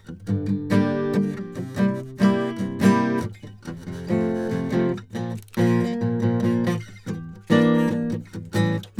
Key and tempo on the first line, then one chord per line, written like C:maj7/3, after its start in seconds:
D minor, 142 BPM
0.00 D:min
0.28 G:min
1.97 C:7/5
3.67 F:maj
5.36 A#:(1,5)
7.04 E:hdim7
8.73 A:7